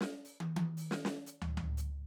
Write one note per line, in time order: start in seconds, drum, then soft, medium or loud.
0.01 snare loud
0.25 hi-hat pedal medium
0.40 open hi-hat soft
0.40 high tom loud
0.56 high tom loud
0.77 hi-hat pedal medium
0.91 snare medium
1.05 snare medium
1.27 hi-hat pedal medium
1.42 floor tom medium
1.57 floor tom medium
1.77 hi-hat pedal medium